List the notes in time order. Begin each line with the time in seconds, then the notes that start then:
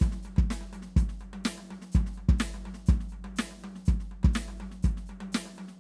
0.01 kick, hi-hat pedal, high tom
0.12 snare
0.23 hi-hat pedal, high tom
0.37 kick, high tom
0.51 snare, hi-hat pedal
0.61 high tom
0.73 hi-hat pedal, high tom
0.83 snare
0.97 kick, hi-hat pedal, high tom
1.09 snare
1.20 hi-hat pedal, high tom
1.34 high tom
1.45 snare, hi-hat pedal
1.58 high tom
1.66 hi-hat pedal
1.71 kick, high tom
1.82 snare
1.92 kick, hi-hat pedal
1.97 high tom
2.07 snare
2.14 hi-hat pedal
2.18 high tom
2.29 kick, high tom
2.39 snare, hi-hat pedal
2.55 high tom
2.60 hi-hat pedal
2.66 high tom
2.75 snare
2.87 kick, hi-hat pedal, high tom
3.01 snare
3.09 hi-hat pedal, high tom
3.25 high tom
3.37 snare, hi-hat pedal
3.52 high tom
3.60 hi-hat pedal
3.64 high tom
3.76 snare
3.86 kick, hi-hat pedal, high tom
4.00 snare
4.08 hi-hat pedal
4.12 high tom
4.24 kick, high tom
4.34 snare, hi-hat pedal
4.49 high tom
4.57 hi-hat pedal
4.61 high tom
4.72 snare
4.83 kick, hi-hat pedal, high tom
4.98 snare
5.07 hi-hat pedal, high tom
5.21 high tom
5.33 snare, hi-hat pedal
5.46 high tom
5.55 hi-hat pedal, high tom
5.69 snare